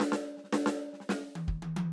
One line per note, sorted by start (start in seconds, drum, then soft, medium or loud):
0.00 snare loud
0.12 snare medium
0.37 snare soft
0.44 snare soft
0.52 snare loud
0.66 snare loud
0.93 snare soft
1.00 snare soft
1.09 snare loud
1.35 high tom loud
1.48 kick medium
1.62 high tom loud
1.76 high tom loud